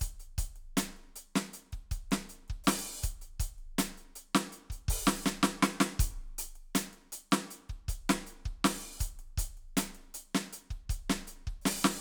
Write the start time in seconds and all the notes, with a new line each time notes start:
0.01 closed hi-hat, kick, hi-hat pedal
0.20 closed hi-hat
0.39 closed hi-hat, kick
0.56 closed hi-hat
0.78 closed hi-hat, snare
0.97 closed hi-hat
1.16 closed hi-hat
1.36 closed hi-hat, snare
1.54 closed hi-hat
1.73 kick, closed hi-hat
1.92 closed hi-hat, kick
2.12 snare, closed hi-hat
2.30 closed hi-hat
2.49 kick, closed hi-hat
2.65 open hi-hat, snare, hi-hat pedal
3.03 closed hi-hat, kick, hi-hat pedal
3.22 closed hi-hat
3.40 closed hi-hat, kick
3.59 closed hi-hat
3.79 closed hi-hat, snare
3.98 closed hi-hat
4.16 closed hi-hat
4.35 closed hi-hat, snare
4.53 closed hi-hat
4.71 closed hi-hat, kick
4.89 open hi-hat, kick
5.08 snare
5.26 snare, hi-hat pedal
5.44 snare
5.63 snare
5.81 snare
6.00 closed hi-hat, kick
6.39 closed hi-hat
6.56 closed hi-hat
6.76 closed hi-hat, snare
6.94 closed hi-hat
7.13 closed hi-hat
7.32 snare, closed hi-hat
7.51 closed hi-hat
7.70 kick, closed hi-hat
7.89 closed hi-hat, kick
8.10 closed hi-hat, snare
8.27 closed hi-hat
8.46 kick, closed hi-hat
8.65 open hi-hat, snare
9.00 closed hi-hat, kick, hi-hat pedal
9.20 closed hi-hat
9.38 closed hi-hat, kick
9.58 closed hi-hat
9.78 closed hi-hat, snare
9.95 closed hi-hat
10.15 closed hi-hat
10.35 snare, closed hi-hat
10.53 closed hi-hat
10.71 kick, closed hi-hat
10.90 closed hi-hat, kick
11.10 snare
11.28 closed hi-hat
11.48 kick, closed hi-hat
11.62 snare, hi-hat pedal
11.67 open hi-hat
11.85 snare